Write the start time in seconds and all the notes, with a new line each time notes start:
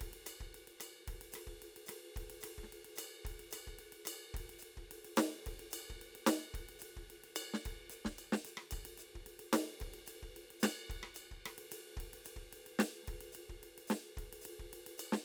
0.01 kick, ride
0.10 snare, ride
0.26 cross-stick, hi-hat pedal, ride bell
0.40 kick, cross-stick
0.55 ride
0.68 ride
0.80 cross-stick, hi-hat pedal, ride bell
1.08 kick, ride
1.21 ride
1.32 cross-stick, hi-hat pedal, ride
1.47 kick
1.62 ride
1.76 ride
1.86 cross-stick, snare, hi-hat pedal, ride
2.16 kick, ride
2.30 ride
2.41 cross-stick, hi-hat pedal, ride
2.58 kick
2.64 snare
2.73 ride
2.85 ride
2.96 cross-stick, hi-hat pedal, ride bell
3.25 kick, ride
3.31 kick
3.40 ride
3.51 cross-stick, hi-hat pedal, ride bell
3.67 kick
3.79 ride
3.93 ride
4.05 cross-stick, snare, hi-hat pedal, ride bell
4.34 kick, ride
4.40 kick
4.50 ride
4.59 hi-hat pedal, ride
4.77 kick
4.91 ride
5.05 ride
5.16 snare, hi-hat pedal, ride
5.46 kick, ride
5.60 ride
5.71 hi-hat pedal, ride bell
5.90 kick, snare
5.95 snare
6.02 ride
6.15 ride
6.27 snare, hi-hat pedal, ride bell
6.54 kick, ride
6.69 ride
6.79 hi-hat pedal, ride
6.97 kick
7.07 snare, ride
7.24 ride
7.36 hi-hat pedal, ride bell
7.54 snare
7.66 kick, ride
7.90 hi-hat pedal, ride
8.05 kick, snare
8.19 ride bell
8.33 snare
8.45 hi-hat pedal, ride
8.57 cross-stick
8.71 kick, ride bell
8.78 kick
8.85 ride
8.98 hi-hat pedal, ride
9.15 kick
9.25 snare, ride
9.40 ride
9.53 snare, hi-hat pedal, ride
9.80 kick, snare, ride
9.94 snare, ride
10.03 snare, hi-hat pedal
10.08 ride
10.23 kick
10.37 ride
10.51 ride
10.60 snare, hi-hat pedal, ride bell
10.90 kick, ride
10.95 kick
11.03 cross-stick
11.14 hi-hat pedal, ride bell
11.31 kick
11.46 cross-stick, ride
11.58 ride
11.71 hi-hat pedal, ride
11.97 kick, ride
12.14 ride
12.25 hi-hat pedal, ride
12.36 kick
12.53 ride
12.67 ride
12.79 snare, hi-hat pedal, ride
13.03 snare
13.08 kick, ride
13.14 kick
13.21 ride
13.32 hi-hat pedal, ride
13.50 kick
13.63 ride
13.78 ride
13.87 snare, hi-hat pedal, ride
14.17 kick, snare, ride
14.27 snare
14.31 snare, ride
14.42 hi-hat pedal, ride
14.60 kick
14.73 ride
14.87 ride
14.98 hi-hat pedal, ride bell
15.13 snare